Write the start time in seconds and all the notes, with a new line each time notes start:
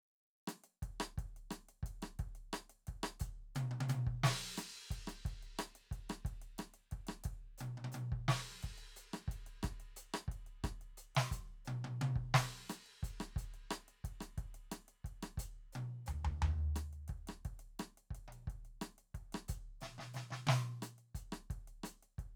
0.47 cross-stick, closed hi-hat
0.64 closed hi-hat
0.82 kick, closed hi-hat
1.00 cross-stick, closed hi-hat
1.18 kick, closed hi-hat
1.36 closed hi-hat
1.51 cross-stick, closed hi-hat
1.69 closed hi-hat
1.83 kick, closed hi-hat
2.02 cross-stick, closed hi-hat
2.19 kick, closed hi-hat
2.35 closed hi-hat
2.53 cross-stick, closed hi-hat
2.69 closed hi-hat
2.87 kick, closed hi-hat
3.03 cross-stick, closed hi-hat
3.20 closed hi-hat, kick
3.55 hi-hat pedal, high tom
3.71 high tom
3.80 high tom
3.89 hi-hat pedal, high tom
4.07 kick
4.24 snare, crash
4.57 closed hi-hat, cross-stick
4.76 closed hi-hat
4.91 kick, closed hi-hat
5.07 cross-stick, closed hi-hat
5.25 kick, closed hi-hat
5.42 closed hi-hat
5.59 cross-stick, closed hi-hat
5.75 closed hi-hat
5.91 kick, closed hi-hat
6.09 cross-stick, closed hi-hat
6.25 kick, closed hi-hat
6.42 closed hi-hat
6.58 cross-stick, closed hi-hat
6.74 closed hi-hat
6.91 kick, closed hi-hat
7.07 cross-stick, closed hi-hat
7.24 kick, closed hi-hat
7.58 hi-hat pedal, high tom
7.77 high tom
7.84 high tom
7.92 hi-hat pedal, high tom
8.12 kick
8.28 snare, crash
8.63 kick, closed hi-hat
8.78 closed hi-hat
8.96 closed hi-hat
9.13 cross-stick, closed hi-hat
9.28 kick, closed hi-hat
9.46 closed hi-hat
9.63 kick, cross-stick, closed hi-hat
9.80 closed hi-hat
9.96 closed hi-hat
10.14 cross-stick, closed hi-hat
10.28 kick, closed hi-hat
10.46 closed hi-hat
10.64 kick, cross-stick, closed hi-hat
10.81 closed hi-hat
10.97 closed hi-hat
11.15 snare, closed hi-hat
11.31 closed hi-hat, kick
11.65 hi-hat pedal, high tom
11.84 high tom
12.01 high tom
12.16 kick
12.34 snare, crash
12.69 closed hi-hat, cross-stick
12.86 closed hi-hat
13.03 closed hi-hat, kick
13.20 cross-stick, closed hi-hat
13.36 closed hi-hat, kick
13.54 closed hi-hat
13.71 cross-stick, closed hi-hat
13.88 closed hi-hat
14.04 kick, closed hi-hat
14.21 cross-stick, closed hi-hat
14.38 kick, closed hi-hat
14.54 closed hi-hat
14.72 cross-stick, closed hi-hat
14.88 closed hi-hat
15.04 kick, closed hi-hat
15.23 cross-stick, closed hi-hat
15.37 closed hi-hat, kick
15.72 hi-hat pedal, high tom
16.06 floor tom, hi-hat pedal
16.25 floor tom
16.42 floor tom
16.76 cross-stick, closed hi-hat
16.93 closed hi-hat
17.08 kick, closed hi-hat
17.27 cross-stick, closed hi-hat
17.45 kick, closed hi-hat
17.59 closed hi-hat
17.79 cross-stick, closed hi-hat
17.97 closed hi-hat
18.10 kick
18.15 closed hi-hat
18.28 high tom
18.32 closed hi-hat
18.47 kick, closed hi-hat
18.65 closed hi-hat
18.81 cross-stick, closed hi-hat
18.98 closed hi-hat
19.14 kick, closed hi-hat
19.32 cross-stick, closed hi-hat
19.48 closed hi-hat, kick
19.81 snare, hi-hat pedal, high tom
19.98 snare, high tom
20.14 snare, hi-hat pedal, high tom
20.31 snare, high tom
20.47 snare, high tom
20.82 closed hi-hat, cross-stick
20.98 closed hi-hat
21.15 closed hi-hat, kick
21.32 cross-stick, closed hi-hat
21.50 kick, closed hi-hat
21.67 closed hi-hat
21.83 closed hi-hat, cross-stick
22.03 closed hi-hat
22.18 kick, closed hi-hat